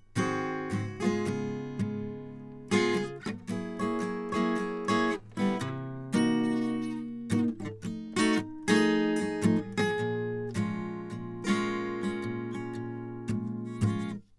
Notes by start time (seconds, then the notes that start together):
0.18 D#3 C4 F#4 G#4
0.73 G#2 D#3 C4
0.77 F#4
0.83 C#3
1.02 B3 F4 G#4
1.07 G#3
1.28 C#3 G#3 B3 F4
1.81 G#3 B3 F4
2.73 G#3 B3 F4 G#4
2.96 C#3 F4
3.31 A#3
3.50 F#3 A#3 E4 G#4
3.54 C#5
3.81 A#3 E4 G#4 C#5
4.02 F#3 A#3 E4
4.34 E4 G#4 C#5
4.38 F#3 A#3
4.58 F#3 A#3 E4 G#4
4.90 A#3 E4 G#4 C#5
5.39 B3 E4
5.63 C3 E3
6.15 E3 A#3 D#4 F#4
7.32 C3 A#3 D#4 F#4
7.85 A3 D#4
8.18 D#4 F#4
8.22 A3
8.41 D#4
8.70 F3 A3 D#4 G#4
9.18 D#4 G#4
9.24 A3
9.45 F3 A3 D#4 G#4
9.79 F3 G#4
10.01 A#2 F3
10.56 A#2 F3 G#3 C#4 F4
10.61 A#4
11.12 A#2 F3 G#3
11.46 F4 A#4
11.50 G#3 C#4
12.06 G#3 C#4
12.26 A#2
12.57 C#4
12.77 A#2
13.30 A#2 F3 G#3 C#4 F4
13.83 F3 G#3 C#4 F4 A#4